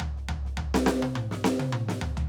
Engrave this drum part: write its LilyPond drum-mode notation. \new DrumStaff \drummode { \time 4/4 \tempo 4 = 105 tomfh16 sn16 tomfh16 sn16 tomfh16 sn16 sn16 tommh16 toml16 sn16 sn16 tommh16 toml16 sn16 tomfh16 tomfh16 | }